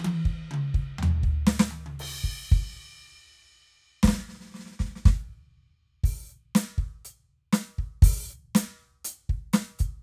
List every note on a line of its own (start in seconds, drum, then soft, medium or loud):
0.01 high tom medium
0.06 high tom loud
0.26 kick medium
0.52 mid tom loud
0.55 mid tom medium
0.75 kick medium
1.00 floor tom medium
1.04 floor tom loud
1.24 kick medium
1.48 snare loud
1.61 snare loud
1.72 high tom soft
1.87 mid tom medium
2.01 crash loud
2.25 kick medium
2.53 kick medium
2.53 snare soft
4.04 kick medium
4.04 snare loud
4.09 snare loud
4.14 snare medium
4.23 snare soft
4.28 snare soft
4.34 snare soft
4.38 snare soft
4.41 snare soft
4.46 snare soft
4.51 snare soft
4.55 snare soft
4.60 snare soft
4.64 snare soft
4.67 snare soft
4.72 snare soft
4.80 kick medium
4.80 snare soft
4.85 snare soft
4.90 snare soft
4.97 snare soft
5.02 snare soft
5.06 kick loud
5.06 snare medium
6.05 open hi-hat medium
6.05 kick medium
6.30 hi-hat pedal soft
6.56 closed hi-hat loud
6.56 snare loud
6.79 kick medium
7.06 closed hi-hat medium
7.54 closed hi-hat medium
7.54 snare loud
7.79 kick soft
8.03 open hi-hat loud
8.03 kick loud
8.31 hi-hat pedal medium
8.56 closed hi-hat loud
8.56 snare loud
8.82 closed hi-hat soft
9.06 closed hi-hat loud
9.30 kick medium
9.54 closed hi-hat medium
9.54 snare loud
9.80 closed hi-hat medium
9.80 kick medium